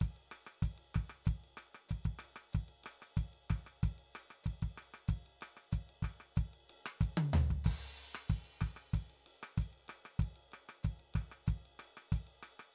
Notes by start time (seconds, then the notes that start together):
0.01 kick, hi-hat pedal, ride
0.17 ride
0.32 cross-stick, ride
0.47 cross-stick
0.63 kick, hi-hat pedal, ride
0.78 ride
0.95 kick, cross-stick, ride
1.10 cross-stick
1.26 kick, hi-hat pedal, ride
1.44 ride
1.58 cross-stick, ride
1.75 cross-stick
1.89 kick, hi-hat pedal, ride
2.05 kick, ride
2.19 cross-stick, ride
2.36 cross-stick
2.53 kick, hi-hat pedal, ride
2.69 ride
2.84 cross-stick, ride
3.03 cross-stick
3.17 kick, hi-hat pedal, ride
3.34 ride
3.50 kick, cross-stick, ride
3.67 cross-stick
3.84 kick, hi-hat pedal, ride
3.99 ride
4.16 cross-stick, ride
4.31 cross-stick
4.44 kick, hi-hat pedal, ride
4.63 kick, ride
4.68 hi-hat pedal
4.78 cross-stick, ride
4.94 cross-stick
5.08 kick, hi-hat pedal, ride
5.27 ride
5.42 cross-stick, ride
5.57 cross-stick
5.72 kick, hi-hat pedal, ride
5.90 ride
6.03 kick, cross-stick, ride
6.21 cross-stick
6.36 kick, hi-hat pedal, ride
6.54 ride
6.70 ride
6.86 cross-stick
7.01 kick, hi-hat pedal, ride
7.18 high tom
7.34 floor tom
7.51 kick
7.65 kick, hi-hat pedal, crash, ride
7.98 ride
8.15 cross-stick
8.30 kick, hi-hat pedal, ride
8.45 ride
8.61 kick, cross-stick, ride
8.77 cross-stick
8.94 kick, hi-hat pedal, ride
9.10 ride
9.27 ride
9.43 cross-stick
9.58 kick, hi-hat pedal, ride
9.73 ride
9.80 hi-hat pedal
9.89 cross-stick, ride
10.06 cross-stick
10.20 kick, hi-hat pedal, ride
10.36 ride
10.53 cross-stick, ride
10.69 cross-stick
10.84 kick, hi-hat pedal, ride
11.00 ride
11.14 kick, cross-stick, ride
11.32 cross-stick
11.47 kick, hi-hat pedal, ride
11.66 ride
11.80 cross-stick, ride
11.97 cross-stick
12.13 kick, hi-hat pedal, ride
12.27 ride
12.33 hi-hat pedal
12.43 cross-stick, ride
12.60 cross-stick